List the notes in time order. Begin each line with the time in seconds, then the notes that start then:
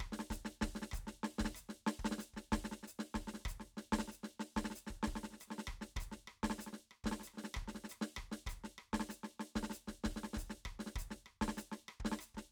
0.01 kick, cross-stick
0.13 snare
0.20 snare
0.31 kick, snare, hi-hat pedal
0.46 snare
0.62 kick, snare
0.76 snare
0.83 snare
0.92 kick, cross-stick, hi-hat pedal
1.08 snare
1.24 snare
1.39 kick, snare
1.45 snare
1.55 cross-stick, hi-hat pedal
1.70 snare
1.87 snare
2.00 kick
2.05 snare
2.12 snare
2.19 snare, hi-hat pedal
2.34 kick, snare
2.53 kick, snare
2.65 snare
2.72 snare
2.84 snare
2.88 hi-hat pedal
3.00 snare
3.15 kick, snare
3.28 snare
3.35 snare
3.41 snare
3.46 kick, cross-stick, hi-hat pedal
3.61 snare
3.78 snare
3.93 kick, snare
3.99 snare
4.08 snare
4.13 hi-hat pedal
4.24 snare
4.40 snare
4.57 kick, snare
4.65 snare
4.71 snare
4.76 hi-hat pedal
4.88 kick, snare
5.04 snare
5.08 kick
5.16 snare
5.24 snare
5.31 snare
5.34 snare
5.41 cross-stick, hi-hat pedal
5.48 snare
5.51 snare
5.59 snare
5.68 kick, cross-stick
5.82 snare
5.97 kick, cross-stick, hi-hat pedal
6.05 kick
6.12 snare
6.28 cross-stick
6.44 kick, snare
6.51 snare
6.59 snare, hi-hat pedal
6.67 snare
6.74 snare
6.92 cross-stick
7.05 kick, snare
7.12 snare
7.20 snare
7.24 hi-hat pedal
7.28 cross-stick
7.34 snare
7.38 snare
7.45 snare
7.55 kick, cross-stick
7.64 kick
7.68 snare
7.76 snare
7.85 snare
7.90 cross-stick, hi-hat pedal
8.02 snare
8.17 kick, cross-stick
8.32 snare
8.47 kick, cross-stick, hi-hat pedal
8.65 snare
8.79 cross-stick
8.94 kick, snare
9.01 snare
9.10 snare, hi-hat pedal
9.24 snare
9.40 snare
9.56 kick, snare
9.64 snare
9.71 snare, hi-hat pedal
9.88 kick, snare
10.05 kick, snare
10.17 snare
10.24 snare
10.34 kick, snare
10.39 hi-hat pedal
10.51 snare
10.66 kick, cross-stick
10.80 snare
10.87 snare
10.96 kick, cross-stick, hi-hat pedal
11.04 kick
11.11 snare
11.27 cross-stick
11.42 kick, snare
11.49 snare
11.58 snare, hi-hat pedal
11.73 snare
11.89 cross-stick
12.01 kick
12.06 snare
12.12 snare
12.20 cross-stick, hi-hat pedal
12.35 kick, snare